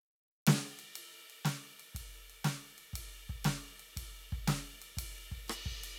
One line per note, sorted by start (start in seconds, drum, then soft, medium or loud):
0.47 snare loud
0.47 ride loud
0.79 ride medium
0.96 ride medium
1.30 ride soft
1.45 snare medium
1.45 ride medium
1.80 ride medium
1.95 kick medium
1.95 ride medium
2.30 ride soft
2.44 snare medium
2.44 ride loud
2.78 ride soft
2.93 kick medium
2.93 ride loud
3.29 kick medium
3.45 snare loud
3.45 ride loud
3.80 ride medium
3.97 kick medium
3.97 ride medium
4.32 kick medium
4.47 snare loud
4.47 ride loud
4.82 ride medium
4.97 kick medium
4.97 ride loud
5.32 kick medium
5.48 cross-stick medium
5.48 ride medium
5.66 kick medium
5.84 ride medium